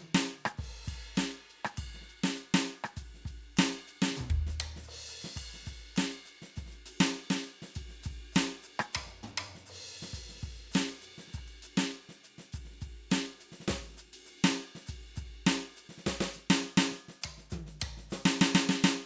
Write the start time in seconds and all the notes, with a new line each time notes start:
0.01 high tom
0.15 snare
0.25 hi-hat pedal
0.46 cross-stick
0.58 kick, crash
0.68 kick
0.85 kick, snare, hi-hat pedal
0.89 ride bell
0.95 kick
0.98 kick
1.15 snare, hi-hat pedal, ride, floor tom
1.30 snare
1.44 hi-hat pedal
1.50 ride
1.65 cross-stick
1.77 kick, hi-hat pedal, ride bell
1.84 kick
1.87 kick
1.95 snare
2.02 snare, hi-hat pedal
2.10 ride
2.24 snare
2.29 snare
2.35 hi-hat pedal
2.41 ride
2.54 snare
2.63 hi-hat pedal
2.69 ride
2.84 cross-stick
2.97 kick, hi-hat pedal, ride
3.15 snare
3.21 snare
3.26 kick, ride
3.35 kick
3.57 snare, hi-hat pedal, ride bell
3.87 hi-hat pedal, ride
4.02 snare
4.12 snare
4.17 kick, hi-hat pedal, mid tom
4.24 snare
4.30 mid tom
4.47 snare, hi-hat pedal
4.60 mid tom
4.77 snare
4.83 hi-hat pedal
4.88 crash
5.09 hi-hat pedal
5.25 snare
5.37 kick, hi-hat pedal, ride bell
5.54 snare
5.63 snare, hi-hat pedal, ride
5.67 kick
5.97 snare, hi-hat pedal, ride bell
6.26 hi-hat pedal, ride
6.42 snare
6.56 kick, snare, hi-hat pedal, ride
6.66 kick, snare
6.72 snare, ride
6.86 hi-hat pedal, ride
7.01 snare
7.14 hi-hat pedal, ride
7.31 snare
7.44 hi-hat pedal, ride
7.62 snare
7.74 kick, hi-hat pedal, ride
7.85 kick
7.90 snare
7.95 snare
8.03 kick, hi-hat pedal, ride
8.13 kick
8.33 snare, hi-hat pedal, ride
8.44 snare
8.63 hi-hat pedal, ride
8.80 cross-stick
8.93 kick, hi-hat pedal, floor tom
9.07 snare
9.18 snare
9.22 snare, floor tom
9.26 hi-hat pedal
9.38 floor tom
9.56 snare
9.66 hi-hat pedal, crash
9.70 snare
9.73 snare
10.03 snare
10.14 kick, hi-hat pedal, ride
10.30 snare
10.36 snare
10.40 kick, snare, hi-hat pedal, ride
10.52 kick
10.72 snare, hi-hat pedal, ride
11.01 hi-hat pedal, ride
11.18 snare
11.28 snare
11.33 kick, hi-hat pedal, ride
11.38 cross-stick
11.48 ride bell
11.63 hi-hat pedal, ride
11.78 snare
11.93 hi-hat pedal, ride
12.09 snare
12.24 hi-hat pedal, ride
12.39 snare
12.53 kick, hi-hat pedal, ride
12.65 snare
12.71 snare
12.76 snare
12.81 kick, hi-hat pedal, ride
13.11 snare, hi-hat pedal, ride
13.23 snare
13.40 hi-hat pedal, ride
13.52 snare
13.61 snare
13.68 kick, snare, hi-hat pedal
13.76 kick
13.79 kick, snare
13.88 snare
13.93 snare
13.98 snare, hi-hat pedal, ride
14.07 snare
14.13 ride
14.26 hi-hat pedal
14.44 snare
14.52 snare, hi-hat pedal
14.62 ride
14.75 snare
14.87 kick, hi-hat pedal, ride
14.94 snare
15.00 snare
15.15 kick, snare, hi-hat pedal, ride
15.27 kick
15.47 snare, hi-hat pedal, ride
15.54 snare
15.76 hi-hat pedal, ride
15.89 snare
15.98 snare
16.06 kick, snare, hi-hat pedal
16.21 snare
16.26 snare
16.33 snare, hi-hat pedal
16.50 snare
16.62 snare, hi-hat pedal
16.78 snare
16.91 snare, hi-hat pedal
17.09 snare
17.22 kick, hi-hat pedal, high tom
17.38 snare
17.50 kick, hi-hat pedal, high tom
17.59 kick
17.67 snare
17.80 kick, hi-hat pedal, mid tom
17.98 snare
18.08 snare, hi-hat pedal
18.12 snare
18.26 snare
18.42 snare, hi-hat pedal
18.55 snare
18.63 hi-hat pedal
18.69 snare
18.84 snare
18.90 hi-hat pedal